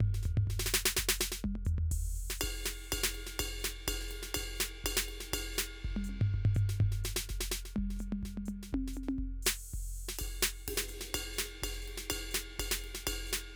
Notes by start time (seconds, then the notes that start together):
0.01 kick, floor tom
0.09 kick
0.15 snare
0.23 snare, floor tom, hi-hat pedal
0.38 floor tom
0.48 kick, snare
0.54 kick
0.60 snare
0.67 snare
0.71 snare, hi-hat pedal
0.86 snare
0.97 kick, snare
1.09 snare
1.19 snare, hi-hat pedal
1.32 snare
1.45 kick, mid tom
1.51 kick
1.56 kick, mid tom
1.66 floor tom, hi-hat pedal
1.79 floor tom
1.92 kick, crash
2.06 kick
2.16 hi-hat pedal
2.31 snare
2.42 kick, ride bell
2.50 kick
2.65 snare, hi-hat pedal
2.93 kick, ride bell
3.00 kick
3.04 snare
3.12 hi-hat pedal, ride
3.27 snare
3.40 kick, ride bell
3.47 kick
3.60 hi-hat pedal
3.65 snare
3.88 kick, ride bell
3.94 kick
4.01 snare
4.09 hi-hat pedal, ride
4.23 snare
4.35 kick, ride bell
4.43 kick
4.56 hi-hat pedal
4.61 snare
4.85 kick, ride bell
4.97 snare
5.04 hi-hat pedal
5.09 ride
5.21 snare
5.34 kick, ride bell
5.40 kick
5.54 hi-hat pedal
5.59 snare
5.85 kick
5.91 kick
5.96 kick, mid tom
6.05 hi-hat pedal
6.10 high tom
6.22 floor tom
6.35 kick
6.42 kick, floor tom
6.55 hi-hat pedal, floor tom
6.70 snare
6.81 kick, floor tom
6.92 snare
7.04 snare, hi-hat pedal
7.17 snare
7.30 kick, snare
7.37 kick
7.41 snare
7.52 snare, hi-hat pedal
7.66 snare
7.77 kick, mid tom
7.85 kick
7.91 snare
7.97 snare, hi-hat pedal
8.01 snare, mid tom
8.13 mid tom
8.23 kick, snare
8.29 kick
8.38 mid tom
8.46 hi-hat pedal, mid tom
8.63 snare
8.73 kick, high tom
8.88 snare
8.94 hi-hat pedal, high tom
9.04 snare
9.09 high tom
9.19 kick
9.24 kick
9.43 hi-hat pedal, crash
9.47 snare
9.74 kick
9.80 kick
9.96 hi-hat pedal
10.09 snare
10.19 kick, ride bell
10.28 kick
10.43 snare, hi-hat pedal
10.68 kick, ride
10.78 snare
10.89 hi-hat pedal, ride
11.01 snare
11.15 kick, ride bell
11.34 hi-hat pedal
11.39 snare
11.46 snare
11.63 kick, ride bell
11.70 kick
11.74 snare
11.82 hi-hat pedal
11.88 ride
11.98 snare
12.11 kick, ride bell
12.32 snare, hi-hat pedal
12.60 kick, ride bell
12.72 snare
12.79 hi-hat pedal
12.84 ride
12.95 snare
13.07 kick, ride bell
13.27 hi-hat pedal
13.33 snare